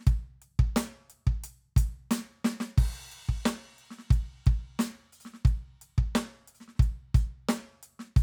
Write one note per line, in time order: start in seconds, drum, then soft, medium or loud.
0.01 snare soft
0.07 kick loud
0.07 snare soft
0.07 closed hi-hat medium
0.42 closed hi-hat soft
0.60 kick loud
0.77 closed hi-hat loud
0.77 snare loud
1.11 closed hi-hat medium
1.28 kick loud
1.44 closed hi-hat loud
1.77 kick loud
1.77 closed hi-hat loud
2.12 closed hi-hat loud
2.12 snare loud
2.19 snare soft
2.45 snare loud
2.61 snare medium
2.78 kick loud
2.78 crash medium
3.12 closed hi-hat medium
3.29 kick medium
3.29 snare soft
3.46 closed hi-hat medium
3.46 snare loud
3.79 closed hi-hat soft
3.86 closed hi-hat soft
3.91 snare soft
3.99 snare soft
4.09 kick loud
4.09 snare soft
4.13 closed hi-hat medium
4.47 kick loud
4.47 closed hi-hat soft
4.80 closed hi-hat loud
4.80 snare loud
5.13 closed hi-hat medium
5.21 closed hi-hat medium
5.26 snare soft
5.34 snare soft
5.46 kick loud
5.46 closed hi-hat soft
5.82 closed hi-hat medium
5.99 kick loud
6.16 snare loud
6.16 closed hi-hat medium
6.48 closed hi-hat medium
6.55 closed hi-hat soft
6.61 snare soft
6.61 closed hi-hat soft
6.68 snare soft
6.76 snare soft
6.80 kick loud
6.80 closed hi-hat medium
7.15 closed hi-hat medium
7.15 kick loud
7.49 closed hi-hat medium
7.49 snare loud
7.60 snare soft
7.84 closed hi-hat medium
8.00 snare medium
8.17 closed hi-hat medium
8.17 kick loud